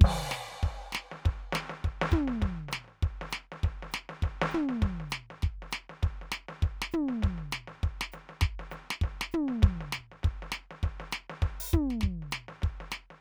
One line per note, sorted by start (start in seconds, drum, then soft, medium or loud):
0.01 kick loud
0.01 crash loud
0.31 snare loud
0.31 hi-hat pedal medium
0.48 snare soft
0.51 snare soft
0.63 kick medium
0.63 snare soft
0.92 snare medium
0.92 hi-hat pedal medium
0.95 snare loud
1.11 snare soft
1.25 kick medium
1.25 snare soft
1.53 snare loud
1.53 hi-hat pedal medium
1.55 snare loud
1.69 snare medium
1.84 kick medium
1.84 snare soft
2.02 snare loud
2.11 kick medium
2.11 floor tom loud
2.11 hi-hat pedal medium
2.28 snare medium
2.42 kick medium
2.42 snare medium
2.69 snare soft
2.69 hi-hat pedal medium
2.73 snare loud
2.84 snare soft
2.88 snare soft
3.02 kick medium
3.02 snare soft
3.21 snare medium
3.30 snare loud
3.30 hi-hat pedal medium
3.52 snare soft
3.63 kick medium
3.63 snare soft
3.82 snare soft
3.91 snare loud
3.91 hi-hat pedal medium
4.09 snare medium
4.22 kick medium
4.22 snare soft
4.42 snare loud
4.50 floor tom loud
4.50 hi-hat pedal medium
4.69 snare soft
4.82 kick medium
4.82 snare medium
5.00 snare soft
5.10 snare loud
5.10 hi-hat pedal medium
5.30 snare soft
5.42 kick medium
5.42 snare soft
5.62 snare soft
5.71 snare loud
5.71 hi-hat pedal medium
5.89 snare soft
6.03 kick medium
6.03 snare soft
6.21 snare soft
6.32 snare loud
6.32 hi-hat pedal medium
6.49 snare soft
6.62 kick medium
6.62 snare soft
6.82 snare loud
6.91 floor tom loud
6.91 hi-hat pedal medium
7.08 snare soft
7.22 kick medium
7.22 snare medium
7.38 snare soft
7.51 snare loud
7.51 hi-hat pedal medium
7.67 snare soft
7.83 kick medium
7.83 snare soft
8.01 snare loud
8.12 snare soft
8.12 hi-hat pedal medium
8.29 snare soft
8.41 kick medium
8.41 snare loud
8.59 snare soft
8.71 snare soft
8.71 hi-hat pedal medium
8.90 snare loud
9.01 kick medium
9.01 snare soft
9.21 snare loud
9.31 floor tom loud
9.31 hi-hat pedal medium
9.48 snare soft
9.62 kick loud
9.62 snare medium
9.81 snare soft
9.86 kick soft
9.92 snare loud
9.92 hi-hat pedal medium
9.97 kick soft
10.12 snare soft
10.23 kick medium
10.23 snare soft
10.42 snare soft
10.52 snare loud
10.52 hi-hat pedal medium
10.71 snare soft
10.83 kick medium
10.83 snare soft
11.00 snare soft
11.11 snare loud
11.11 hi-hat pedal medium
11.30 snare medium
11.42 kick medium
11.42 snare medium
11.60 open hi-hat loud
11.71 kick medium
11.71 floor tom loud
11.71 hi-hat pedal medium
11.90 snare soft
12.01 kick medium
12.01 snare medium
12.22 snare soft
12.31 snare loud
12.31 hi-hat pedal medium
12.48 snare soft
12.62 kick medium
12.62 snare soft
12.80 snare soft
12.91 snare loud
12.91 hi-hat pedal medium
13.10 snare soft